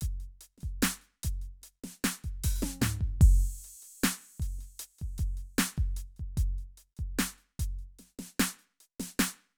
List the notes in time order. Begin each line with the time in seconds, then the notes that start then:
0.01 closed hi-hat, kick
0.20 closed hi-hat
0.41 closed hi-hat
0.58 snare, closed hi-hat
0.63 kick
0.82 closed hi-hat, snare
1.01 closed hi-hat
1.23 closed hi-hat, kick
1.42 closed hi-hat
1.62 closed hi-hat, snare
1.84 snare, closed hi-hat
2.04 closed hi-hat, snare
2.24 kick, closed hi-hat
2.43 open hi-hat, kick, snare
2.62 snare, high tom
2.82 snare, floor tom
3.01 kick
3.21 kick, crash
3.64 closed hi-hat
3.82 closed hi-hat
4.04 closed hi-hat, snare
4.21 closed hi-hat
4.40 kick, closed hi-hat
4.58 snare, closed hi-hat
4.79 closed hi-hat
4.99 kick, closed hi-hat
5.18 kick, closed hi-hat
5.37 closed hi-hat
5.58 closed hi-hat, snare
5.77 kick, closed hi-hat
5.97 closed hi-hat
6.16 kick, closed hi-hat
6.37 closed hi-hat, kick
6.58 closed hi-hat
6.77 closed hi-hat
6.97 kick, closed hi-hat
7.19 closed hi-hat, snare
7.38 closed hi-hat
7.59 closed hi-hat, kick
7.79 closed hi-hat
7.99 snare, closed hi-hat
8.19 snare, closed hi-hat
8.40 closed hi-hat, snare
8.59 closed hi-hat
8.80 closed hi-hat
9.00 snare, closed hi-hat
9.19 closed hi-hat, snare